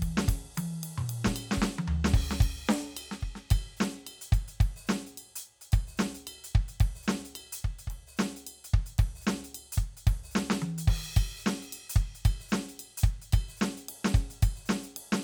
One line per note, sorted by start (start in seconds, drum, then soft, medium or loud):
0.02 kick medium
0.02 ride medium
0.17 snare loud
0.28 kick loud
0.28 ride loud
0.55 hi-hat pedal soft
0.55 high tom loud
0.55 ride loud
0.83 ride loud
0.90 hi-hat pedal soft
0.98 mid tom loud
1.10 ride loud
1.25 kick medium
1.25 snare loud
1.36 ride bell loud
1.51 snare loud
1.51 hi-hat pedal soft
1.58 kick medium
1.62 snare loud
1.79 high tom loud
1.88 floor tom loud
2.05 snare loud
2.14 kick loud
2.14 crash loud
2.31 snare medium
2.41 kick loud
2.41 snare soft
2.41 ride medium
2.41 floor tom soft
2.66 snare loud
2.66 hi-hat pedal medium
2.97 ride bell loud
3.12 snare medium
3.21 kick medium
3.21 ride soft
3.36 snare soft
3.51 kick loud
3.51 ride bell loud
3.77 snare loud
3.77 hi-hat pedal medium
4.07 ride bell loud
4.21 closed hi-hat medium
4.32 kick loud
4.32 ride bell medium
4.48 closed hi-hat medium
4.60 kick loud
4.60 ride medium
4.76 open hi-hat medium
4.87 snare loud
4.87 hi-hat pedal medium
5.07 closed hi-hat medium
5.18 ride bell medium
5.36 closed hi-hat loud
5.43 ride soft
5.61 closed hi-hat medium
5.72 kick loud
5.72 ride bell medium
5.72 floor tom soft
5.87 open hi-hat medium
5.98 snare loud
5.98 hi-hat pedal medium
6.15 closed hi-hat medium
6.27 ride bell loud
6.44 closed hi-hat medium
6.55 kick loud
6.68 closed hi-hat medium
6.80 kick loud
6.80 ride medium
6.80 floor tom soft
6.95 open hi-hat medium
7.03 hi-hat pedal medium
7.08 snare loud
7.25 closed hi-hat medium
7.36 ride bell loud
7.53 closed hi-hat loud
7.65 kick medium
7.79 closed hi-hat medium
7.87 kick medium
7.87 snare soft
7.87 ride medium
7.87 floor tom soft
8.07 open hi-hat medium
8.17 snare loud
8.17 hi-hat pedal medium
8.36 closed hi-hat medium
8.47 ride bell medium
8.64 closed hi-hat medium
8.74 kick loud
8.86 closed hi-hat medium
8.99 kick loud
8.99 ride medium
8.99 floor tom soft
9.16 open hi-hat medium
9.22 hi-hat pedal medium
9.27 snare loud
9.44 closed hi-hat medium
9.55 ride bell loud
9.72 closed hi-hat loud
9.78 kick loud
9.97 closed hi-hat medium
10.07 kick loud
10.07 ride medium
10.07 floor tom soft
10.24 open hi-hat medium
10.31 hi-hat pedal medium
10.35 snare loud
10.50 snare loud
10.62 high tom loud
10.78 closed hi-hat loud
10.88 kick loud
10.88 crash loud
11.04 closed hi-hat medium
11.17 kick loud
11.17 ride bell loud
11.36 open hi-hat medium
11.36 hi-hat pedal medium
11.46 snare loud
11.62 closed hi-hat medium
11.73 ride bell loud
11.90 closed hi-hat loud
11.96 kick loud
12.15 closed hi-hat medium
12.25 kick loud
12.25 ride bell loud
12.40 open hi-hat medium
12.49 snare loud
12.49 hi-hat pedal medium
12.69 closed hi-hat medium
12.80 ride bell medium
12.98 closed hi-hat loud
13.04 kick loud
13.22 closed hi-hat medium
13.33 kick loud
13.33 ride bell loud
13.49 open hi-hat medium
13.57 hi-hat pedal medium
13.61 snare loud
13.77 closed hi-hat medium
13.89 ride loud
14.05 snare loud
14.14 kick loud
14.14 ride medium
14.30 closed hi-hat medium
14.43 kick loud
14.43 ride bell loud
14.56 open hi-hat medium
14.66 snare loud
14.66 hi-hat pedal medium
14.84 closed hi-hat medium
14.97 ride loud
15.12 snare loud